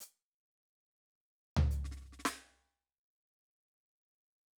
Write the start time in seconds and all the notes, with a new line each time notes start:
0.00 hi-hat pedal
1.56 floor tom
1.71 hi-hat pedal
1.84 snare
1.91 snare
1.96 snare
2.01 snare
2.05 snare
2.12 snare
2.19 snare
2.25 snare, hi-hat pedal